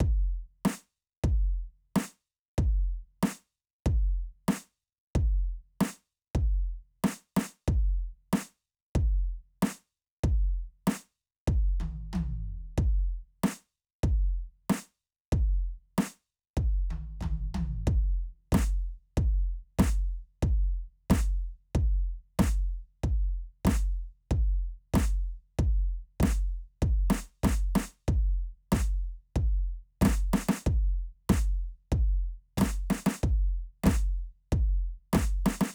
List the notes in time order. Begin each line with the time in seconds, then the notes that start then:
0.01 kick
0.66 snare
1.24 kick
1.96 snare
2.59 kick
3.23 snare
3.87 kick
4.49 snare
5.16 kick
5.81 snare
6.36 kick
7.05 snare
7.37 snare
7.68 kick
8.34 snare
8.96 kick
9.63 snare
10.24 kick
10.88 snare
11.48 kick
11.81 floor tom, high tom
12.14 floor tom, high tom
12.78 kick
13.44 snare
14.04 kick
14.70 snare
15.33 kick
15.99 snare
16.58 kick
16.83 kick
16.91 floor tom, high tom
17.21 kick, floor tom, high tom
17.55 floor tom, high tom
17.88 kick
18.53 kick, snare
19.18 kick
19.79 kick, snare
20.43 kick
21.11 kick, snare
21.76 kick
22.40 kick, snare
23.04 kick
23.66 kick, snare
24.32 kick
24.94 kick, snare
25.59 kick
26.21 kick, snare
26.83 kick
27.11 snare
27.44 kick, snare
27.76 snare
28.09 kick
28.73 kick, snare
29.36 kick
30.02 kick, snare
30.06 snare
30.34 snare
30.49 snare
30.67 kick
31.30 kick, snare
31.93 kick
32.58 kick, snare
32.62 snare
32.91 snare
33.07 snare
33.24 kick
33.84 kick, snare
33.87 snare
34.53 kick
35.14 kick, snare
35.16 snare
35.47 snare
35.62 snare